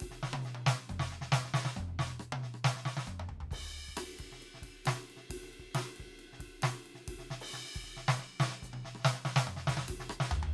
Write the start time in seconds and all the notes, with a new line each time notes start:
0.01 kick, hi-hat pedal, ride
0.10 kick, snare
0.13 kick
0.24 snare
0.34 high tom
0.43 snare, hi-hat pedal
0.55 high tom
0.67 snare
0.81 snare
0.90 kick, hi-hat pedal, mid tom
0.99 kick, snare
1.12 snare
1.22 snare
1.33 snare, hi-hat pedal
1.45 snare
1.55 snare
1.66 snare
1.77 kick, hi-hat pedal, mid tom
1.86 kick, high tom
2.00 snare
2.08 high tom
2.20 cross-stick, hi-hat pedal
2.33 high tom
2.43 snare
2.55 cross-stick
2.65 snare, hi-hat pedal
2.77 snare
2.86 snare
2.98 snare
3.06 kick, hi-hat pedal, mid tom
3.13 kick
3.20 mid tom
3.30 kick, floor tom
3.38 kick, floor tom
3.51 kick, hi-hat pedal, crash, floor tom
3.66 kick
3.89 kick
3.98 cross-stick, hi-hat pedal, ride
4.20 kick, ride
4.26 kick
4.33 snare
4.41 hi-hat pedal, ride
4.55 snare
4.63 kick, ride
4.69 kick
4.85 snare, hi-hat pedal, ride
4.94 snare
5.11 ride
5.17 snare
5.31 kick, hi-hat pedal, ride
5.37 kick
5.43 snare
5.51 snare, ride
5.60 kick
5.65 kick
5.75 snare, hi-hat pedal, ride
5.97 kick, ride
6.08 snare
6.20 hi-hat pedal, ride
6.33 snare
6.40 kick, ride
6.46 kick
6.63 snare, hi-hat pedal, ride
6.86 ride
6.95 snare
7.08 kick, hi-hat pedal, ride
7.15 kick
7.19 snare
7.31 snare
7.41 crash
7.49 hi-hat pedal
7.54 snare
7.66 snare
7.76 kick, hi-hat pedal, ride bell
7.84 kick, snare
7.87 kick, snare
7.98 snare
8.09 snare
8.16 snare, hi-hat pedal
8.40 snare, hi-hat pedal
8.52 snare
8.63 kick, hi-hat pedal, high tom
8.74 closed hi-hat, high tom
8.86 snare
8.95 cross-stick
9.00 snare
9.05 snare, hi-hat pedal
9.15 snare
9.25 snare, hi-hat pedal
9.37 snare
9.46 kick, hi-hat pedal, mid tom
9.57 snare
9.64 snare, hi-hat pedal
9.68 kick
9.74 kick, snare
9.89 kick, hi-hat pedal, ride
9.98 kick
10.00 kick, snare
10.10 kick, cross-stick
10.21 snare
10.31 hi-hat pedal, floor tom
10.43 floor tom